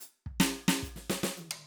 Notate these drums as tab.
Hi-hat     |x--x--x-----|
Percussion |-----------x|
Snare      |---o-o-ooo--|
High tom   |----------o-|
Kick       |--g---g-----|